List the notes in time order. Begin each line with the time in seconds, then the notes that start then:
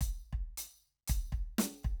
0.06 closed hi-hat, kick
0.33 kick
0.57 closed hi-hat
1.08 closed hi-hat, kick
1.32 kick, closed hi-hat
1.58 closed hi-hat, snare
1.64 snare
1.83 kick, closed hi-hat